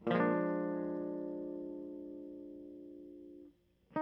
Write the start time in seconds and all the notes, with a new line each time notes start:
0.09 A#2 F3
0.16 G#3
0.21 D4
3.97 D#4